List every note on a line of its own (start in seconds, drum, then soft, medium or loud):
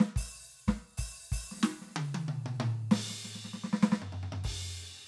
0.01 snare loud
0.16 open hi-hat loud
0.16 kick medium
0.68 kick medium
0.68 snare loud
0.98 open hi-hat loud
0.98 kick medium
1.32 open hi-hat loud
1.32 kick medium
1.52 snare soft
1.57 snare soft
1.60 snare soft
1.63 snare loud
1.82 snare soft
1.87 snare soft
1.91 snare soft
1.97 high tom loud
2.15 high tom loud
2.29 mid tom medium
2.46 mid tom loud
2.60 mid tom loud
2.92 snare loud
2.92 ride loud
3.10 snare soft
3.25 snare soft
3.35 snare soft
3.45 snare soft
3.54 snare soft
3.64 snare medium
3.73 snare medium
3.83 snare loud
3.92 snare loud
4.02 floor tom medium
4.13 floor tom medium
4.23 floor tom medium
4.33 floor tom loud
4.44 kick medium
4.44 ride loud